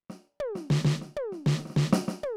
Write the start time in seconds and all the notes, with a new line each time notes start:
0.10 snare
0.40 high tom
0.55 snare
0.70 snare
0.85 snare
1.01 snare
1.16 high tom
1.32 snare
1.46 snare
1.59 snare
1.65 snare
1.70 snare
1.76 snare
1.93 snare
2.08 snare
2.23 high tom